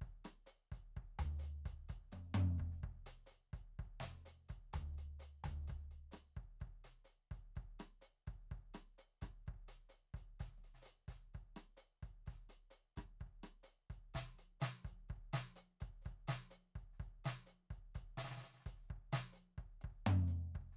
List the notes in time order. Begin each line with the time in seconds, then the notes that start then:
0.02 closed hi-hat, kick
0.07 kick
0.25 closed hi-hat, cross-stick, snare
0.47 closed hi-hat, hi-hat pedal
0.72 closed hi-hat, kick
0.77 kick
0.97 kick, closed hi-hat
1.02 kick
1.19 closed hi-hat, floor tom
1.39 hi-hat pedal
1.43 closed hi-hat
1.66 closed hi-hat, kick
1.72 kick
1.89 closed hi-hat, kick
2.12 closed hi-hat, mid tom
2.35 hi-hat pedal, mid tom, open hi-hat
2.59 kick, closed hi-hat
2.66 kick
2.72 snare
2.84 kick, closed hi-hat
3.06 closed hi-hat, snare
3.27 hi-hat pedal
3.31 closed hi-hat
3.54 closed hi-hat, kick
3.79 closed hi-hat, kick
3.85 kick
4.00 closed hi-hat, snare, mid tom
4.26 closed hi-hat, hi-hat pedal
4.49 closed hi-hat, kick
4.74 closed hi-hat, kick, floor tom
4.98 closed hi-hat
5.20 closed hi-hat, hi-hat pedal
5.44 closed hi-hat, kick, floor tom
5.52 kick
5.68 closed hi-hat, kick
5.77 snare
5.91 closed hi-hat
6.12 closed hi-hat, cross-stick, hi-hat pedal
6.37 closed hi-hat, kick
6.61 closed hi-hat, kick
6.67 kick
6.84 closed hi-hat, snare
7.05 hi-hat pedal
7.09 closed hi-hat
7.31 closed hi-hat, kick
7.56 closed hi-hat, kick
7.80 closed hi-hat, cross-stick, snare
8.02 closed hi-hat, hi-hat pedal
8.27 closed hi-hat, kick
8.51 closed hi-hat, kick
8.57 kick
8.74 closed hi-hat, cross-stick, snare
8.99 hi-hat pedal
9.22 closed hi-hat, kick, cross-stick, snare
9.47 closed hi-hat, kick
9.54 kick
9.68 closed hi-hat, snare
9.89 hi-hat pedal
9.94 closed hi-hat
10.14 closed hi-hat, kick
10.20 kick
10.40 closed hi-hat, kick, snare
10.46 kick
10.58 snare, mid tom
10.64 closed hi-hat, snare
10.74 snare
10.82 closed hi-hat, hi-hat pedal
11.08 closed hi-hat, kick, snare
11.34 closed hi-hat, kick
11.56 closed hi-hat, cross-stick, snare
11.77 closed hi-hat, hi-hat pedal
12.03 closed hi-hat, kick
12.27 closed hi-hat, kick, snare
12.33 kick
12.50 closed hi-hat, cross-stick
12.71 closed hi-hat, hi-hat pedal
12.97 closed hi-hat, kick, cross-stick
13.20 closed hi-hat, kick
13.27 kick
13.44 closed hi-hat, cross-stick
13.64 hi-hat pedal
13.68 closed hi-hat
13.90 closed hi-hat, kick
14.14 closed hi-hat, kick, snare
14.21 kick
14.39 closed hi-hat
14.61 closed hi-hat, snare, hi-hat pedal
14.85 closed hi-hat, kick
14.90 kick
15.09 closed hi-hat, kick
15.16 kick
15.33 closed hi-hat, snare
15.56 closed hi-hat, hi-hat pedal
15.81 closed hi-hat, kick
15.88 kick
16.02 closed hi-hat, hi-hat pedal
16.06 kick
16.12 kick
16.28 closed hi-hat, snare
16.51 closed hi-hat, hi-hat pedal
16.76 closed hi-hat, kick
16.93 snare
17.00 closed hi-hat, kick
17.25 closed hi-hat, snare
17.47 closed hi-hat, hi-hat pedal
17.71 closed hi-hat, kick
17.76 kick
17.95 closed hi-hat, kick
18.01 kick
18.18 closed hi-hat, snare
18.25 snare
18.31 snare
18.38 snare, hi-hat pedal
18.44 closed hi-hat, snare
18.49 snare
18.54 snare
18.60 snare
18.66 closed hi-hat, kick, snare
18.72 kick, snare
18.76 snare
18.83 snare
18.89 kick, open hi-hat
18.96 kick
19.13 closed hi-hat, snare
19.33 closed hi-hat, hi-hat pedal
19.58 kick, closed hi-hat
19.63 kick
19.82 kick, closed hi-hat
19.90 kick
20.07 closed hi-hat, mid tom
20.28 closed hi-hat, hi-hat pedal
20.55 kick, closed hi-hat
20.61 kick
20.72 snare